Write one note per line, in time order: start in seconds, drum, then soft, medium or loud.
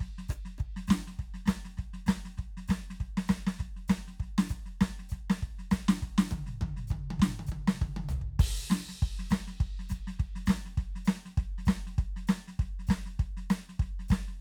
0.01 kick medium
0.01 snare soft
0.19 snare medium
0.29 kick medium
0.29 cross-stick medium
0.29 hi-hat pedal medium
0.46 snare soft
0.59 kick medium
0.59 cross-stick soft
0.77 snare medium
0.88 kick medium
0.88 snare medium
0.88 hi-hat pedal medium
0.91 snare loud
1.08 snare medium
1.20 kick medium
1.20 snare soft
1.35 snare soft
1.46 snare medium
1.46 hi-hat pedal medium
1.48 kick medium
1.48 snare loud
1.65 snare medium
1.78 kick medium
1.78 snare soft
1.94 snare medium
2.07 kick medium
2.07 snare medium
2.07 hi-hat pedal medium
2.09 snare loud
2.26 snare medium
2.38 kick medium
2.38 snare soft
2.58 snare medium
2.68 kick medium
2.68 snare medium
2.68 hi-hat pedal medium
2.71 snare loud
2.91 snare medium
3.01 kick medium
3.01 snare soft
3.18 snare loud
3.29 kick medium
3.29 snare loud
3.29 hi-hat pedal medium
3.47 snare loud
3.59 kick medium
3.59 snare medium
3.77 snare soft
3.89 kick medium
3.89 snare loud
3.89 hi-hat pedal medium
4.08 snare soft
4.20 kick medium
4.20 snare soft
4.39 snare loud
4.49 kick medium
4.49 snare soft
4.49 hi-hat pedal medium
4.66 snare soft
4.81 kick medium
4.81 snare loud
5.00 snare soft
5.10 kick medium
5.10 snare soft
5.10 hi-hat pedal medium
5.30 snare loud
5.43 kick medium
5.43 snare soft
5.59 snare soft
5.72 kick medium
5.72 snare loud
5.72 hi-hat pedal medium
5.89 snare loud
6.03 kick medium
6.03 snare soft
6.19 snare loud
6.29 kick medium
6.29 hi-hat pedal medium
6.29 high tom loud
6.47 snare soft
6.62 kick medium
6.62 high tom loud
6.77 snare soft
6.88 kick medium
6.88 hi-hat pedal soft
6.92 high tom loud
7.11 high tom loud
7.20 kick medium
7.20 snare loud
7.40 high tom loud
7.47 kick medium
7.47 hi-hat pedal medium
7.53 high tom loud
7.68 snare loud
7.82 kick medium
7.82 high tom loud
7.97 high tom loud
8.09 floor tom loud
8.09 hi-hat pedal medium
8.22 kick soft
8.40 kick loud
8.40 crash loud
8.71 snare medium
8.71 snare loud
8.71 hi-hat pedal medium
8.89 snare medium
9.03 kick medium
9.03 snare soft
9.20 snare medium
9.30 kick medium
9.30 snare medium
9.30 snare loud
9.30 hi-hat pedal medium
9.48 snare medium
9.61 kick medium
9.61 snare soft
9.80 snare soft
9.90 kick medium
9.90 snare medium
9.90 hi-hat pedal medium
10.08 snare medium
10.20 kick medium
10.20 snare soft
10.36 snare medium
10.47 kick medium
10.47 snare medium
10.47 hi-hat pedal medium
10.50 snare loud
10.66 snare soft
10.78 kick medium
10.78 snare soft
10.96 snare medium
11.06 snare loud
11.06 hi-hat pedal medium
11.26 snare medium
11.38 kick medium
11.38 snare soft
11.59 snare soft
11.66 kick medium
11.66 hi-hat pedal medium
11.87 snare medium
11.99 kick medium
11.99 snare soft
12.17 snare medium
12.28 snare loud
12.28 hi-hat pedal medium
12.48 snare medium
12.60 kick medium
12.60 snare medium
12.80 snare soft
12.88 kick medium
12.88 snare loud
12.88 hi-hat pedal medium
13.06 snare medium
13.20 kick medium
13.20 snare soft
13.38 snare medium
13.43 kick soft
13.50 snare loud
13.50 hi-hat pedal medium
13.70 snare medium
13.80 kick medium
13.80 snare medium
14.00 snare soft
14.09 kick medium
14.09 snare loud
14.09 hi-hat pedal medium
14.29 snare soft